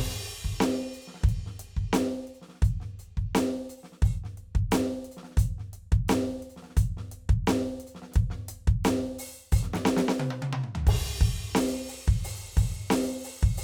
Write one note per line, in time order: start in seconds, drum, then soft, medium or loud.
0.10 snare soft
0.15 snare soft
0.27 closed hi-hat medium
0.45 kick medium
0.45 snare soft
0.61 closed hi-hat medium
0.61 snare loud
0.94 closed hi-hat medium
1.02 closed hi-hat soft
1.08 snare soft
1.14 snare soft
1.20 kick loud
1.20 snare soft
1.29 closed hi-hat medium
1.46 snare soft
1.60 closed hi-hat medium
1.77 kick medium
1.93 closed hi-hat loud
1.93 snare loud
2.27 closed hi-hat soft
2.34 closed hi-hat soft
2.42 snare soft
2.49 snare soft
2.54 snare soft
2.62 closed hi-hat medium
2.62 kick loud
2.81 snare soft
2.99 closed hi-hat medium
3.17 kick medium
3.35 closed hi-hat loud
3.35 snare loud
3.70 closed hi-hat medium
3.77 open hi-hat soft
3.84 snare soft
3.92 snare soft
4.02 open hi-hat medium
4.02 kick loud
4.12 hi-hat pedal soft
4.24 snare soft
4.38 closed hi-hat soft
4.55 kick loud
4.72 closed hi-hat loud
4.72 snare loud
5.05 closed hi-hat medium
5.12 closed hi-hat soft
5.17 snare medium
5.23 snare soft
5.31 snare soft
5.37 closed hi-hat loud
5.37 kick loud
5.59 snare soft
5.73 closed hi-hat medium
5.92 kick loud
6.09 closed hi-hat loud
6.09 snare loud
6.43 closed hi-hat soft
6.50 closed hi-hat soft
6.57 snare soft
6.63 snare soft
6.70 snare soft
6.77 closed hi-hat loud
6.77 kick loud
6.97 snare soft
7.12 closed hi-hat medium
7.29 kick loud
7.29 snare soft
7.47 closed hi-hat medium
7.47 snare loud
7.80 closed hi-hat medium
7.87 closed hi-hat medium
7.95 snare soft
8.02 snare soft
8.11 snare soft
8.11 closed hi-hat medium
8.16 kick loud
8.30 snare medium
8.49 closed hi-hat loud
8.68 kick loud
8.85 closed hi-hat loud
8.85 snare loud
9.19 open hi-hat loud
9.52 open hi-hat loud
9.52 kick loud
9.60 snare medium
9.60 hi-hat pedal soft
9.74 snare loud
9.86 snare loud
9.97 snare loud
10.09 snare loud
10.20 high tom loud
10.31 high tom medium
10.42 high tom loud
10.53 high tom loud
10.64 mid tom medium
10.75 floor tom loud
10.87 kick loud
10.87 crash loud
11.21 kick loud
11.55 open hi-hat loud
11.55 snare loud
11.88 open hi-hat loud
12.08 kick loud
12.24 open hi-hat loud
12.57 open hi-hat loud
12.57 kick loud
12.90 open hi-hat loud
12.90 snare loud
13.24 open hi-hat loud
13.43 kick loud
13.58 open hi-hat loud